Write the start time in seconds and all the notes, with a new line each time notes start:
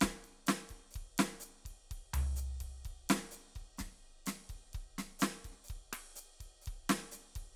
0.01 kick, snare, ride
0.06 cross-stick
0.24 ride
0.47 snare, hi-hat pedal, ride
0.69 kick, ride
0.80 snare
0.91 hi-hat pedal, ride
0.96 kick
1.01 kick
1.18 snare, ride
1.40 hi-hat pedal, ride
1.65 kick, ride
1.71 kick
1.91 kick, ride
1.97 kick
2.14 floor tom, ride
2.36 hi-hat pedal
2.61 kick, ride
2.66 kick
2.85 kick, ride
2.91 kick
3.09 snare, ride
3.16 snare
3.31 hi-hat pedal
3.36 snare
3.41 snare
3.56 kick, ride
3.61 kick
3.78 kick, snare, hi-hat pedal, ride
3.86 kick
4.26 snare, hi-hat pedal, ride
4.50 kick, ride
4.55 kick
4.66 snare
4.74 kick, ride
4.81 kick
4.98 snare, ride
5.19 snare, hi-hat pedal, ride
5.45 kick, ride
5.50 kick, snare
5.64 hi-hat pedal
5.69 kick, ride
5.76 kick
5.93 cross-stick, ride
6.16 hi-hat pedal, ride
6.40 kick, ride
6.45 kick
6.62 hi-hat pedal
6.66 kick, ride
6.74 kick
6.90 snare, ride
6.98 snare
7.12 snare, hi-hat pedal, ride
7.36 kick, ride
7.41 kick